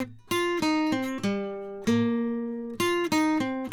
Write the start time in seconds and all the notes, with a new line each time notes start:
0.32 F4
0.63 D#4
0.91 C4 D#4
1.24 G3
1.88 A#3
2.80 F4
3.12 D#4
3.41 C4